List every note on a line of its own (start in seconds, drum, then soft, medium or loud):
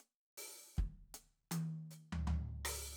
0.00 closed hi-hat soft
0.37 open hi-hat medium
0.75 kick medium
0.75 closed hi-hat soft
0.75 hi-hat pedal soft
1.14 closed hi-hat medium
1.51 closed hi-hat medium
1.51 high tom medium
1.91 hi-hat pedal medium
2.12 floor tom medium
2.27 floor tom medium
2.65 open hi-hat loud
2.65 cross-stick medium